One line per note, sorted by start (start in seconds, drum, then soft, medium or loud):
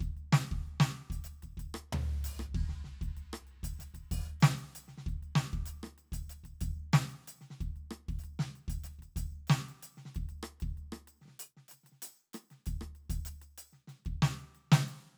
0.01 kick medium
0.01 percussion soft
0.17 percussion soft
0.33 snare loud
0.52 kick medium
0.52 percussion soft
0.67 percussion soft
0.80 snare loud
1.10 kick medium
1.10 percussion medium
1.24 percussion medium
1.43 kick soft
1.43 percussion soft
1.58 kick soft
1.58 percussion medium
1.75 cross-stick medium
1.93 floor tom loud
2.25 percussion medium
2.40 cross-stick medium
2.55 kick medium
2.55 crash soft
2.70 snare soft
2.85 snare soft
3.02 kick medium
3.02 percussion soft
3.17 percussion soft
3.34 cross-stick medium
3.47 percussion soft
3.64 kick soft
3.64 percussion medium
3.79 snare soft
3.79 percussion medium
3.94 kick soft
3.94 percussion soft
4.12 kick medium
4.12 percussion medium
4.41 snare loud
4.41 percussion soft
4.50 snare soft
4.58 percussion soft
4.76 percussion medium
4.89 snare soft
4.98 snare soft
5.07 kick medium
5.07 percussion soft
5.23 percussion soft
5.36 snare medium
5.53 kick medium
5.53 percussion soft
5.66 percussion medium
5.69 percussion soft
5.84 cross-stick medium
5.87 cross-stick soft
5.98 percussion soft
6.12 kick soft
6.12 percussion medium
6.30 snare soft
6.30 percussion medium
6.44 kick soft
6.44 percussion soft
6.61 kick medium
6.61 percussion medium
6.93 snare loud
6.93 percussion soft
7.10 percussion soft
7.28 percussion medium
7.41 snare soft
7.51 snare soft
7.61 kick medium
7.61 percussion soft
7.76 percussion soft
7.91 cross-stick medium
8.09 kick medium
8.09 percussion soft
8.19 percussion soft
8.24 percussion soft
8.40 snare medium
8.56 percussion soft
8.68 kick medium
8.68 percussion medium
8.84 snare soft
8.84 percussion medium
8.99 kick soft
8.99 percussion soft
9.17 kick medium
9.17 percussion medium
9.48 snare loud
9.48 percussion soft
9.69 percussion soft
9.83 percussion medium
9.98 snare soft
10.06 snare soft
10.15 kick medium
10.15 percussion soft
10.29 percussion soft
10.43 cross-stick medium
10.61 kick medium
10.61 percussion soft
10.78 percussion soft
10.93 cross-stick medium
10.96 cross-stick soft
11.08 percussion soft
11.22 snare soft
11.26 snare soft
11.28 snare soft
11.40 percussion loud
11.57 snare soft
11.69 percussion soft
11.72 snare soft
11.72 percussion medium
11.84 snare soft
11.84 percussion soft
11.89 snare soft
11.92 snare soft
12.02 percussion loud
12.34 cross-stick medium
12.34 percussion medium
12.36 percussion medium
12.51 snare soft
12.51 percussion soft
12.66 kick medium
12.66 percussion medium
12.81 cross-stick medium
12.96 percussion soft
13.10 kick medium
13.10 percussion medium
13.26 percussion medium
13.42 percussion soft
13.58 percussion medium
13.73 snare soft
13.88 snare soft
13.88 percussion soft
14.06 kick medium
14.06 percussion soft
14.23 snare loud
14.40 percussion soft
14.55 percussion soft
14.72 snare loud
14.89 percussion soft